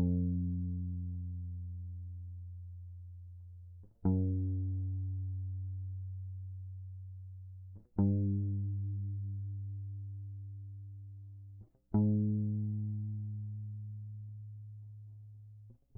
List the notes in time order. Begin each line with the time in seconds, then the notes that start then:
0.00 F2
4.07 F#2
8.01 G2
11.97 G#2